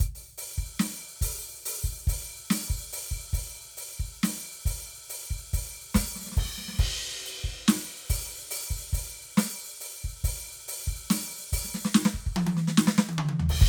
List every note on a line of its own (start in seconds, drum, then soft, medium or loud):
0.00 open hi-hat loud
0.00 kick medium
0.00 hi-hat pedal soft
0.16 open hi-hat medium
0.38 open hi-hat loud
0.58 kick soft
0.58 open hi-hat soft
0.80 open hi-hat loud
0.80 snare loud
1.00 open hi-hat soft
1.22 open hi-hat loud
1.22 kick medium
1.44 open hi-hat soft
1.66 open hi-hat loud
1.84 kick soft
1.84 open hi-hat soft
2.08 open hi-hat loud
2.08 kick medium
2.29 open hi-hat soft
2.51 open hi-hat loud
2.51 snare loud
2.70 kick soft
2.70 open hi-hat soft
2.93 open hi-hat loud
3.12 open hi-hat soft
3.12 kick soft
3.34 open hi-hat loud
3.34 kick medium
3.56 open hi-hat soft
3.78 open hi-hat loud
4.00 kick soft
4.00 open hi-hat soft
4.24 open hi-hat loud
4.24 snare loud
4.44 open hi-hat soft
4.66 open hi-hat loud
4.66 kick medium
4.87 open hi-hat soft
5.10 open hi-hat loud
5.31 kick soft
5.31 open hi-hat soft
5.54 open hi-hat loud
5.54 kick medium
5.74 open hi-hat soft
5.95 open hi-hat loud
5.95 kick medium
5.95 snare loud
6.16 snare soft
6.19 snare soft
6.21 snare soft
6.27 snare soft
6.32 snare soft
6.37 kick medium
6.37 crash loud
6.45 snare soft
6.58 snare soft
6.61 snare soft
6.68 snare soft
6.74 snare soft
6.78 kick medium
6.78 snare soft
6.78 ride loud
7.26 open hi-hat medium
7.44 kick soft
7.44 open hi-hat soft
7.69 open hi-hat loud
7.69 snare loud
7.89 open hi-hat soft
8.10 open hi-hat loud
8.10 kick medium
8.29 open hi-hat soft
8.51 open hi-hat loud
8.71 kick soft
8.71 open hi-hat soft
8.93 open hi-hat loud
8.93 kick medium
8.93 snare soft
9.16 open hi-hat soft
9.38 open hi-hat loud
9.38 snare loud
9.43 snare soft
9.59 open hi-hat soft
9.81 open hi-hat loud
10.02 kick soft
10.02 open hi-hat soft
10.24 open hi-hat loud
10.24 kick medium
10.47 open hi-hat soft
10.69 open hi-hat loud
10.88 kick soft
10.88 open hi-hat soft
11.11 open hi-hat loud
11.11 snare loud
11.32 open hi-hat soft
11.39 snare soft
11.53 open hi-hat loud
11.53 kick soft
11.65 snare soft
11.75 snare medium
11.85 snare medium
11.95 snare loud
12.06 snare loud
12.15 kick soft
12.27 kick soft
12.37 high tom loud
12.47 high tom loud
12.57 snare medium
12.68 snare medium
12.78 snare loud
12.88 snare loud
12.99 snare loud
13.09 closed hi-hat soft
13.09 high tom loud
13.14 crash soft
13.19 mid tom loud
13.29 high tom loud
13.40 floor tom loud
13.49 kick soft
13.49 crash loud
13.61 kick loud
13.61 ride loud